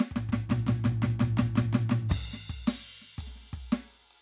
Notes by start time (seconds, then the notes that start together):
0.00 snare
0.11 kick
0.16 snare, floor tom
0.29 kick, floor tom
0.33 snare
0.49 kick, snare, floor tom
0.67 kick, snare, floor tom
0.84 kick, snare, floor tom
1.02 kick, snare, floor tom
1.19 kick, snare, floor tom
1.37 snare, floor tom
1.41 kick
1.55 snare, floor tom
1.60 kick
1.73 snare, floor tom
1.89 kick, snare, floor tom
2.09 kick, snare, crash
2.33 snare
2.49 kick
2.67 snare, crash
3.01 snare
3.18 kick, ride
3.27 snare
3.35 snare
3.40 snare
3.43 snare
3.53 kick, ride
3.72 snare, ride
4.11 ride